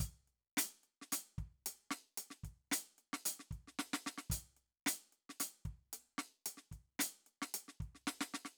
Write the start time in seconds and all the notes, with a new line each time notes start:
0.04 closed hi-hat, kick
0.27 closed hi-hat
0.57 closed hi-hat, snare
0.83 closed hi-hat
1.01 snare
1.12 closed hi-hat, snare
1.38 kick, closed hi-hat
1.66 closed hi-hat
1.91 snare
2.17 closed hi-hat
2.30 snare
2.43 kick, closed hi-hat
2.71 closed hi-hat, snare
2.98 closed hi-hat
3.13 snare
3.25 closed hi-hat
3.39 snare
3.51 kick, closed hi-hat
3.67 snare
3.79 snare
3.93 snare
4.06 snare
4.18 snare
4.30 closed hi-hat, kick
4.56 closed hi-hat
4.86 closed hi-hat, snare
5.12 closed hi-hat
5.29 snare
5.40 closed hi-hat, snare
5.65 kick, closed hi-hat
5.93 closed hi-hat
6.18 snare
6.46 closed hi-hat
6.57 snare
6.71 kick, closed hi-hat
6.99 closed hi-hat, snare
7.26 closed hi-hat
7.42 snare
7.54 closed hi-hat
7.68 snare
7.80 kick, closed hi-hat
7.95 snare
8.07 snare
8.21 snare
8.34 snare
8.45 snare